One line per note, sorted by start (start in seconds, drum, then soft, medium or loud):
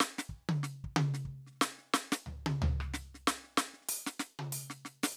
0.00 snare loud
0.18 snare loud
0.29 kick soft
0.49 high tom loud
0.63 snare medium
0.84 kick soft
0.96 high tom loud
1.14 snare medium
1.25 kick soft
1.47 snare soft
1.51 snare soft
1.55 snare soft
1.58 snare soft
1.61 snare loud
1.78 snare soft
1.83 snare soft
1.86 snare soft
1.92 snare soft
1.92 snare loud
2.12 snare loud
2.26 floor tom medium
2.46 high tom loud
2.62 floor tom loud
2.80 cross-stick medium
2.94 snare medium
3.14 snare soft
3.27 snare loud
3.44 snare soft
3.47 snare soft
3.51 snare soft
3.54 snare soft
3.57 snare loud
3.74 snare soft
3.78 snare soft
3.81 snare soft
3.85 snare soft
3.85 closed hi-hat loud
4.06 snare loud
4.19 snare loud
4.39 high tom medium
4.52 closed hi-hat loud
4.70 snare medium
4.85 snare medium
5.03 open hi-hat loud
5.03 snare loud
5.12 hi-hat pedal medium